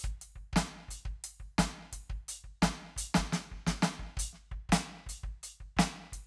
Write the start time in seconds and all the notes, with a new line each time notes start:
0.01 kick, hi-hat pedal
0.21 closed hi-hat
0.36 kick
0.53 closed hi-hat, kick, snare
0.88 closed hi-hat, kick
1.05 kick
1.24 closed hi-hat
1.40 kick
1.58 closed hi-hat, kick, snare
1.92 kick, closed hi-hat
2.10 kick
2.28 closed hi-hat
2.44 kick
2.62 kick, snare, closed hi-hat
2.91 snare
2.96 closed hi-hat, kick
3.14 kick, snare
3.32 snare
3.51 kick
3.67 kick, snare
3.82 snare
3.99 kick
4.17 closed hi-hat, kick
4.33 snare
4.51 kick
4.69 closed hi-hat, kick, snare
5.06 closed hi-hat, kick
5.23 kick
5.43 closed hi-hat
5.60 kick
5.77 closed hi-hat, kick, snare
6.12 kick, closed hi-hat